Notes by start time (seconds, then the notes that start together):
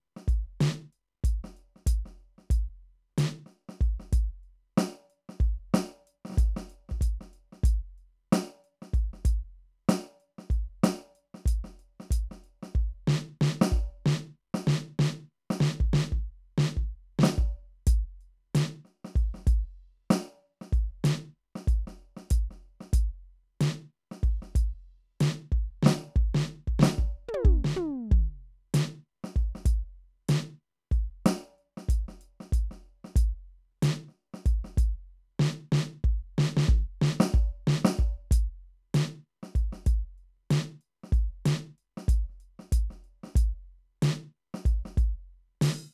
0.17 snare
0.28 kick, closed hi-hat
0.61 closed hi-hat, snare
0.93 closed hi-hat
1.24 closed hi-hat, kick
1.44 snare
1.57 closed hi-hat
1.76 snare
1.87 closed hi-hat, kick
2.06 snare
2.20 closed hi-hat
2.38 snare
2.51 kick, closed hi-hat
3.18 closed hi-hat, snare
3.46 snare
3.52 closed hi-hat
3.69 snare
3.81 kick, closed hi-hat
4.00 snare
4.13 closed hi-hat, kick
4.43 closed hi-hat
4.78 closed hi-hat, snare
5.10 closed hi-hat
5.29 snare
5.40 kick, closed hi-hat
5.74 closed hi-hat, snare
6.07 closed hi-hat
6.25 snare
6.30 snare
6.32 snare
6.34 kick, snare
6.39 closed hi-hat
6.57 snare
6.70 closed hi-hat
6.89 kick, snare
7.01 closed hi-hat, kick
7.21 snare
7.33 closed hi-hat
7.53 snare
7.64 closed hi-hat, kick
7.98 closed hi-hat
8.33 closed hi-hat, snare
8.64 closed hi-hat
8.82 snare
8.94 kick, closed hi-hat
9.14 snare
9.25 closed hi-hat, kick
9.89 closed hi-hat, snare
10.20 closed hi-hat
10.39 snare
10.50 closed hi-hat, kick
10.84 closed hi-hat, snare
11.15 closed hi-hat
11.35 snare
11.46 closed hi-hat, kick
11.64 snare
11.79 closed hi-hat
12.00 snare
12.11 closed hi-hat, kick
12.32 snare
12.44 closed hi-hat
12.63 snare
12.75 kick
13.08 snare
13.41 snare
13.62 snare
13.72 kick
14.06 snare
14.55 snare
14.67 snare
14.99 snare
15.51 snare
15.61 snare
15.80 kick
15.94 snare
16.12 kick
16.58 snare
16.77 kick
17.19 snare
17.24 snare
17.38 kick
17.87 closed hi-hat, kick
18.21 closed hi-hat
18.55 closed hi-hat, snare
18.85 snare, closed hi-hat
19.05 snare
19.16 kick, closed hi-hat, crash
19.35 snare
19.39 snare
19.47 closed hi-hat, kick
20.11 snare, closed hi-hat
20.62 snare
20.73 kick, closed hi-hat
21.04 closed hi-hat, snare
21.56 snare
21.68 kick, closed hi-hat
21.88 snare
21.99 closed hi-hat
22.17 snare
22.31 closed hi-hat, kick
22.51 snare
22.63 closed hi-hat
22.81 snare
22.93 closed hi-hat, kick
23.61 closed hi-hat, snare
24.12 snare
24.23 kick, closed hi-hat
24.28 crash
24.42 snare
24.56 closed hi-hat, kick
25.21 closed hi-hat, snare
25.52 kick
25.83 snare
25.86 snare
26.16 kick
26.35 snare
26.68 kick
26.80 snare
26.83 snare
26.99 kick
27.28 mid tom
27.34 high tom
27.45 kick
27.65 snare
27.76 floor tom
28.08 kick
28.12 kick
28.74 closed hi-hat, snare
29.24 snare
29.36 kick, closed hi-hat
29.55 snare
29.66 closed hi-hat, kick
30.29 closed hi-hat, snare
30.92 closed hi-hat, kick
31.26 closed hi-hat, snare
31.59 closed hi-hat
31.78 snare
31.89 closed hi-hat, kick, snare
32.09 snare
32.21 closed hi-hat
32.41 snare
32.53 closed hi-hat, kick
32.71 snare
32.86 closed hi-hat
33.05 snare
33.16 closed hi-hat, kick
33.83 closed hi-hat, snare
34.09 snare
34.34 snare
34.46 kick, closed hi-hat
34.65 snare
34.78 closed hi-hat, kick
35.40 snare
35.72 snare
36.04 kick
36.38 snare
36.57 snare
36.69 kick
37.02 snare
37.20 snare
37.34 kick
37.68 snare
37.85 snare
37.99 kick
38.31 closed hi-hat, kick
38.95 snare, closed hi-hat
39.43 snare
39.55 kick, closed hi-hat
39.73 snare
39.87 closed hi-hat, kick
40.18 closed hi-hat
40.51 closed hi-hat, snare
40.81 closed hi-hat
41.04 snare
41.13 closed hi-hat, kick
41.46 closed hi-hat, snare
41.78 closed hi-hat
41.98 snare
42.09 closed hi-hat, kick
42.30 snare
42.41 closed hi-hat
42.60 snare
42.72 closed hi-hat, kick
42.91 snare
43.04 closed hi-hat
43.24 snare
43.27 snare
43.36 closed hi-hat, kick
44.03 closed hi-hat, snare
44.55 snare
44.66 closed hi-hat, kick
44.86 snare
44.98 closed hi-hat, kick
45.62 open hi-hat, snare